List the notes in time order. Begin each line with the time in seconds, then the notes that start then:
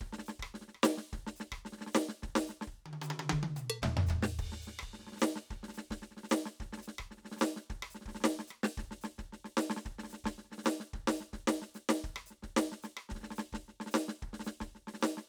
0.01 kick, snare
0.07 kick
0.13 snare
0.19 snare
0.26 snare, hi-hat pedal
0.39 kick, cross-stick
0.54 snare
0.61 snare
0.68 snare
0.75 cross-stick
0.83 snare, hi-hat pedal
0.97 snare
1.13 kick, snare
1.19 kick
1.27 snare
1.36 hi-hat pedal
1.40 snare
1.52 kick, cross-stick
1.65 snare
1.72 snare
1.78 snare
1.81 snare
1.87 snare
1.93 snare, hi-hat pedal
2.09 snare
2.22 kick, snare
2.30 kick
2.35 snare
2.47 snare, hi-hat pedal
2.61 snare
2.67 kick
2.86 high tom
2.93 high tom
3.02 hi-hat pedal, high tom
3.10 high tom
3.19 high tom
3.32 kick
3.38 kick
3.43 high tom
3.56 hi-hat pedal, mid tom
3.70 percussion
3.82 kick, floor tom
3.97 floor tom
4.07 kick, hi-hat pedal, floor tom
4.16 kick
4.23 snare
4.39 kick, ride
4.52 kick, snare
4.62 hi-hat pedal
4.67 snare
4.79 kick, cross-stick
4.93 snare
4.99 snare
5.07 snare
5.12 snare
5.16 snare, hi-hat pedal
5.22 snare
5.36 snare
5.50 kick, snare
5.63 snare
5.68 snare
5.73 snare, hi-hat pedal
5.78 snare
5.90 kick, snare
6.02 snare
6.11 snare
6.17 snare
6.24 snare
6.29 snare, hi-hat pedal
6.46 snare
6.60 kick, snare
6.66 kick
6.73 snare
6.78 snare
6.82 hi-hat pedal
6.88 snare
6.99 kick, cross-stick
7.11 snare
7.17 snare
7.22 snare
7.25 snare
7.32 snare
7.37 snare, hi-hat pedal
7.41 snare
7.56 snare
7.70 kick, snare
7.76 kick
7.82 cross-stick
7.90 hi-hat pedal
7.95 snare
8.01 snare
8.06 kick, snare
8.15 snare
8.20 snare
8.24 snare
8.39 snare
8.47 cross-stick, hi-hat pedal
8.63 snare
8.77 kick, snare
8.84 kick
8.91 snare
9.01 snare, hi-hat pedal
9.18 kick, snare
9.33 snare
9.45 snare
9.57 snare, hi-hat pedal
9.70 snare
9.77 snare
9.85 kick, snare
9.92 kick
9.99 snare
10.04 snare
10.10 snare, hi-hat pedal
10.13 snare
10.24 kick, snare
10.38 snare
10.45 snare
10.50 snare
10.52 snare
10.58 snare
10.64 snare, hi-hat pedal
10.66 snare
10.80 snare
10.93 kick, snare
11.00 kick
11.07 snare
11.16 hi-hat pedal
11.20 snare
11.33 kick, snare
11.47 snare
11.62 snare
11.74 snare, hi-hat pedal
11.89 snare
12.04 kick, snare
12.10 kick
12.16 cross-stick
12.26 hi-hat pedal
12.30 snare
12.43 kick, snare
12.57 snare
12.72 snare
12.82 snare, hi-hat pedal
12.97 cross-stick
13.09 kick, snare
13.15 kick, snare
13.20 snare
13.23 snare
13.36 snare, hi-hat pedal
13.53 kick, snare
13.68 snare
13.80 snare
13.86 snare
13.91 snare, hi-hat pedal
14.08 snare
14.22 kick, snare
14.29 kick
14.33 snare
14.40 snare
14.44 snare, hi-hat pedal
14.60 kick, snare
14.75 snare
14.87 snare
14.94 snare
15.00 snare, hi-hat pedal
15.03 snare
15.17 snare